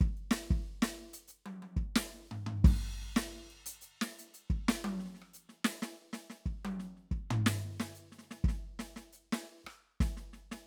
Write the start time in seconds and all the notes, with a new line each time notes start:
0.01 kick, closed hi-hat
0.18 closed hi-hat
0.31 snare
0.51 kick, closed hi-hat
0.67 closed hi-hat
0.83 snare
1.14 closed hi-hat
1.28 hi-hat pedal
1.46 high tom
1.63 high tom
1.77 kick
1.96 snare
2.32 floor tom
2.47 floor tom
2.65 kick, crash
3.00 closed hi-hat
3.17 snare
3.33 closed hi-hat
3.51 closed hi-hat
3.66 closed hi-hat
3.82 hi-hat pedal
4.02 snare
4.19 closed hi-hat
4.34 closed hi-hat
4.50 kick
4.69 snare
4.75 snare
4.85 high tom
5.00 snare
5.06 snare
5.10 snare
5.15 snare
5.22 cross-stick
5.34 hi-hat pedal
5.49 snare
5.65 snare
5.83 snare
6.13 snare
6.30 snare
6.46 kick
6.65 high tom
6.80 snare
6.97 snare
7.12 kick
7.31 floor tom
7.47 snare
7.80 snare
7.95 hi-hat pedal
8.12 snare
8.19 snare
8.24 snare
8.31 snare
8.45 kick
8.49 snare
8.80 snare
8.97 snare
9.13 hi-hat pedal
9.33 snare
9.65 kick, cross-stick
10.01 kick, snare
10.17 snare
10.34 snare
10.52 snare